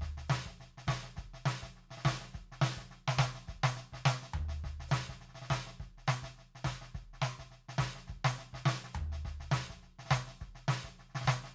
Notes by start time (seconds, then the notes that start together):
0.01 kick, snare
0.08 kick
0.17 snare
0.28 snare, hi-hat pedal
0.46 kick, snare
0.60 snare
0.77 snare
0.87 kick, snare, hi-hat pedal
0.96 kick
1.03 snare
1.16 kick, snare
1.25 kick
1.34 snare
1.45 snare, hi-hat pedal
1.62 kick, snare
1.76 snare
1.82 snare
1.88 snare
1.91 snare
1.97 snare
2.04 kick, snare, hi-hat pedal
2.10 kick, snare
2.13 kick
2.21 snare
2.34 kick, snare
2.52 snare
2.61 snare, hi-hat pedal
2.77 kick, snare
2.91 snare
3.08 snare
3.17 kick, snare, hi-hat pedal
3.34 snare
3.47 kick, snare
3.55 kick
3.63 snare
3.74 snare, hi-hat pedal
3.92 kick, snare
4.05 snare
4.22 snare
4.32 kick, floor tom, hi-hat pedal
4.45 kick, snare
4.64 kick, snare
4.70 kick
4.80 snare
4.88 snare, hi-hat pedal
5.09 kick, snare
5.21 snare
5.28 snare
5.34 snare
5.42 snare
5.48 kick, snare, hi-hat pedal
5.66 snare
5.80 kick, snare
5.86 kick
5.97 snare
6.07 snare, hi-hat pedal
6.22 kick, snare
6.38 snare
6.55 snare
6.64 kick, snare, hi-hat pedal
6.72 kick
6.75 kick
6.81 snare
6.94 kick, snare
7.02 kick
7.13 snare
7.22 snare, hi-hat pedal
7.39 kick, snare
7.51 snare
7.69 snare
7.78 kick, snare, hi-hat pedal
7.86 kick
7.95 snare
8.07 kick, snare
8.16 kick
8.24 snare
8.35 snare, hi-hat pedal
8.53 kick, snare
8.66 snare
8.84 snare
8.93 kick, floor tom, hi-hat pedal
9.03 kick
9.05 kick
9.12 snare
9.25 kick, snare
9.31 kick
9.36 kick, snare
9.51 snare, hi-hat pedal
9.69 kick, snare
9.75 kick
9.82 snare
9.99 snare
10.05 snare
10.10 kick, snare, hi-hat pedal
10.17 kick
10.27 snare
10.40 kick, snare
10.48 kick
10.55 snare
10.68 snare, hi-hat pedal
10.84 kick, snare
10.99 snare
11.09 snare
11.15 snare
11.21 kick, snare, hi-hat pedal
11.27 snare
11.44 snare